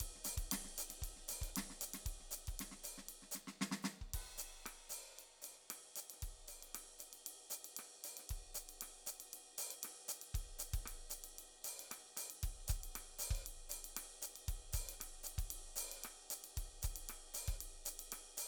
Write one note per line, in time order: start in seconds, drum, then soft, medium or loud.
0.01 kick soft
0.01 ride medium
0.16 snare soft
0.25 snare soft
0.25 hi-hat pedal medium
0.25 ride medium
0.38 kick soft
0.38 ride medium
0.52 snare medium
0.52 ride loud
0.65 snare soft
0.78 hi-hat pedal medium
0.78 ride medium
0.90 snare soft
0.90 ride medium
1.02 kick soft
1.02 ride medium
1.17 snare soft
1.29 snare soft
1.29 hi-hat pedal medium
1.29 ride medium
1.42 kick soft
1.42 ride medium
1.57 snare medium
1.57 ride medium
1.71 snare soft
1.82 hi-hat pedal medium
1.82 ride medium
1.94 snare soft
1.94 ride medium
2.06 kick soft
2.06 ride medium
2.20 snare soft
2.31 hi-hat pedal medium
2.31 ride medium
2.37 snare soft
2.48 kick soft
2.48 ride soft
2.60 snare soft
2.60 ride medium
2.72 snare soft
2.84 hi-hat pedal medium
2.84 ride medium
2.98 snare soft
3.09 ride medium
3.23 snare soft
3.32 snare soft
3.32 hi-hat pedal medium
3.48 snare soft
3.62 snare medium
3.72 snare medium
3.83 snare medium
3.83 hi-hat pedal soft
4.02 kick soft
4.14 kick soft
4.14 ride medium
4.14 crash soft
4.38 hi-hat pedal medium
4.38 ride medium
4.66 cross-stick medium
4.66 ride medium
4.90 hi-hat pedal medium
4.90 ride medium
5.19 ride soft
5.42 hi-hat pedal soft
5.42 ride medium
5.71 cross-stick soft
5.71 ride medium
5.96 hi-hat pedal medium
5.96 ride medium
6.10 cross-stick soft
6.10 ride medium
6.23 kick soft
6.23 ride medium
6.48 hi-hat pedal soft
6.48 ride soft
6.63 ride soft
6.75 cross-stick soft
6.75 ride medium
6.99 hi-hat pedal soft
6.99 ride medium
7.14 ride soft
7.27 ride medium
7.51 hi-hat pedal medium
7.51 ride medium
7.65 ride medium
7.77 cross-stick soft
7.77 ride medium
8.05 hi-hat pedal medium
8.05 ride medium
8.17 cross-stick soft
8.17 ride medium
8.30 kick soft
8.30 ride medium
8.55 hi-hat pedal medium
8.55 ride medium
8.70 ride soft
8.82 cross-stick soft
8.82 ride medium
9.07 hi-hat pedal medium
9.07 ride medium
9.21 ride medium
9.34 ride medium
9.59 hi-hat pedal medium
9.59 ride medium
9.71 ride medium
9.84 cross-stick soft
9.84 ride medium
10.09 hi-hat pedal loud
10.09 ride medium
10.22 ride medium
10.35 kick soft
10.35 ride medium
10.59 hi-hat pedal medium
10.59 ride medium
10.74 kick soft
10.74 ride medium
10.86 cross-stick soft
10.86 ride medium
11.10 hi-hat pedal medium
11.10 ride medium
11.25 ride medium
11.39 ride medium
11.65 hi-hat pedal medium
11.65 ride medium
11.80 ride medium
11.92 cross-stick soft
11.92 ride medium
12.17 cross-stick soft
12.17 hi-hat pedal medium
12.17 ride medium
12.30 ride medium
12.44 kick soft
12.44 ride medium
12.68 kick soft
12.68 hi-hat pedal medium
12.68 ride medium
12.84 ride medium
12.96 cross-stick soft
12.96 ride medium
13.19 hi-hat pedal loud
13.19 ride medium
13.31 kick soft
13.36 ride soft
13.47 ride medium
13.70 hi-hat pedal medium
13.70 ride medium
13.85 ride medium
13.97 cross-stick soft
13.97 ride medium
14.23 hi-hat pedal medium
14.23 ride medium
14.36 ride soft
14.49 kick soft
14.49 ride medium
14.73 kick soft
14.73 hi-hat pedal medium
14.73 ride medium
14.89 ride medium
15.01 cross-stick soft
15.01 ride medium
15.24 hi-hat pedal medium
15.24 ride medium
15.39 kick soft
15.39 ride medium
15.51 ride medium
15.76 hi-hat pedal medium
15.76 ride medium
15.92 ride medium
16.04 cross-stick soft
16.04 ride medium
16.31 hi-hat pedal medium
16.31 ride medium
16.45 ride medium
16.58 kick soft
16.58 ride medium
16.83 kick soft
16.83 hi-hat pedal medium
16.83 ride medium
16.96 ride medium
17.09 cross-stick soft
17.09 ride medium
17.35 hi-hat pedal medium
17.35 ride medium
17.48 kick soft
17.48 ride medium
17.61 ride medium
17.86 hi-hat pedal medium
17.86 ride medium
18.00 ride medium
18.13 cross-stick soft
18.13 ride medium
18.38 hi-hat pedal medium
18.38 ride medium